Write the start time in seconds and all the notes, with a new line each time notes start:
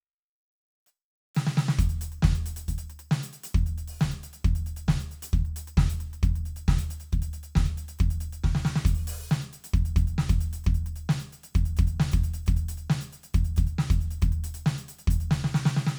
0.87 percussion
1.35 snare, percussion
1.57 snare
1.69 snare
1.79 kick, percussion
1.89 percussion
2.01 percussion
2.12 percussion
2.23 kick, snare
2.35 percussion
2.46 percussion
2.57 percussion
2.68 kick, percussion
2.78 percussion
2.90 percussion
2.99 percussion
3.11 snare
3.23 percussion
3.33 percussion
3.44 percussion
3.55 kick, percussion
3.66 percussion
3.78 percussion
4.00 snare, percussion
4.04 kick
4.12 percussion
4.24 percussion
4.33 percussion
4.45 kick, percussion
4.55 percussion
4.66 percussion
4.77 percussion
4.88 kick, snare
5.00 percussion
5.11 percussion
5.23 percussion
5.33 kick, percussion
5.45 percussion
5.56 percussion
5.68 percussion
5.77 kick, snare
5.90 percussion
6.01 percussion
6.13 percussion
6.23 kick, percussion
6.36 percussion
6.46 percussion
6.56 percussion
6.68 kick, snare
6.79 percussion
6.91 percussion
7.00 percussion
7.13 kick, percussion
7.22 percussion
7.33 percussion
7.43 percussion
7.56 kick, snare
7.66 percussion
7.78 percussion
7.89 percussion
7.99 kick, percussion
8.11 percussion
8.33 percussion
8.44 kick, snare
8.55 snare
8.76 snare
8.85 kick, percussion
8.95 percussion
9.08 percussion
9.29 snare, percussion
9.42 percussion
9.53 percussion
9.64 percussion
9.74 kick, percussion
9.85 percussion
9.96 kick, percussion
10.07 percussion
10.18 snare
10.29 kick, percussion
10.41 percussion
10.53 percussion
10.64 kick, percussion
10.75 percussion
10.86 percussion
10.96 percussion
11.09 snare
11.20 percussion
11.33 percussion
11.44 percussion
11.55 kick, percussion
11.66 percussion
11.77 kick, percussion
11.87 percussion
12.00 snare
12.12 kick, percussion
12.24 percussion
12.34 percussion
12.47 kick, percussion
12.57 percussion
12.69 percussion
12.78 percussion
12.90 snare
13.01 percussion
13.13 percussion
13.24 percussion
13.34 kick, percussion
13.45 percussion
13.57 kick, percussion
13.67 percussion
13.79 snare
13.90 kick, percussion
14.11 percussion
14.22 kick, percussion
14.32 percussion
14.44 percussion
14.54 percussion
14.66 snare
14.78 percussion
14.89 percussion
14.99 percussion
15.08 kick, percussion
15.21 percussion
15.31 snare
15.44 snare
15.55 snare
15.66 snare
15.77 snare
15.87 snare